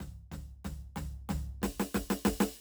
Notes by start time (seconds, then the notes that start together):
0.00 kick, snare, floor tom
0.32 kick, snare, floor tom
0.65 kick, snare, floor tom
0.96 kick, snare, floor tom
1.29 kick, snare, floor tom
1.62 kick, snare
1.80 snare
1.94 kick, snare
2.10 snare
2.25 kick, snare
2.40 snare